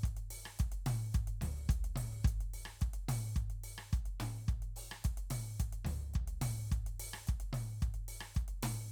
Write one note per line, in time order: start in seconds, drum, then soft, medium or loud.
0.01 kick medium
0.01 hi-hat pedal soft
0.05 closed hi-hat soft
0.17 closed hi-hat soft
0.31 open hi-hat medium
0.36 kick soft
0.46 cross-stick medium
0.57 kick medium
0.57 closed hi-hat medium
0.57 hi-hat pedal soft
0.72 closed hi-hat soft
0.86 open hi-hat medium
0.86 high tom loud
1.12 kick medium
1.12 closed hi-hat medium
1.12 hi-hat pedal soft
1.27 closed hi-hat soft
1.41 floor tom medium
1.41 open hi-hat medium
1.68 kick medium
1.68 closed hi-hat medium
1.68 hi-hat pedal soft
1.84 closed hi-hat soft
1.96 open hi-hat medium
1.96 high tom medium
2.23 kick medium
2.23 hi-hat pedal soft
2.28 closed hi-hat medium
2.41 closed hi-hat soft
2.54 open hi-hat medium
2.65 cross-stick medium
2.79 kick medium
2.79 closed hi-hat soft
2.79 hi-hat pedal soft
2.94 closed hi-hat soft
3.09 open hi-hat medium
3.09 high tom loud
3.35 kick medium
3.35 closed hi-hat soft
3.35 hi-hat pedal soft
3.50 closed hi-hat soft
3.64 open hi-hat medium
3.78 cross-stick medium
3.90 closed hi-hat soft
3.90 kick medium
3.90 hi-hat pedal soft
4.06 closed hi-hat soft
4.20 open hi-hat medium
4.20 high tom medium
4.47 kick medium
4.47 closed hi-hat soft
4.47 hi-hat pedal soft
4.62 closed hi-hat soft
4.76 open hi-hat medium
4.91 cross-stick medium
5.02 kick medium
5.02 closed hi-hat medium
5.02 hi-hat pedal soft
5.17 closed hi-hat soft
5.30 open hi-hat medium
5.30 high tom medium
5.58 kick medium
5.58 closed hi-hat medium
5.58 hi-hat pedal soft
5.73 closed hi-hat soft
5.85 floor tom medium
5.85 open hi-hat medium
6.14 kick medium
6.14 hi-hat pedal soft
6.14 open hi-hat soft
6.28 closed hi-hat soft
6.42 open hi-hat medium
6.42 high tom loud
6.69 kick medium
6.69 closed hi-hat soft
6.69 hi-hat pedal soft
6.86 closed hi-hat soft
7.00 open hi-hat medium
7.14 cross-stick medium
7.26 kick medium
7.26 closed hi-hat medium
7.26 hi-hat pedal soft
7.40 closed hi-hat soft
7.53 open hi-hat medium
7.53 high tom medium
7.80 kick medium
7.80 closed hi-hat soft
7.80 hi-hat pedal soft
7.94 closed hi-hat soft
8.08 open hi-hat medium
8.21 cross-stick medium
8.35 kick medium
8.35 hi-hat pedal soft
8.35 open hi-hat soft
8.48 closed hi-hat soft
8.63 open hi-hat medium
8.63 high tom medium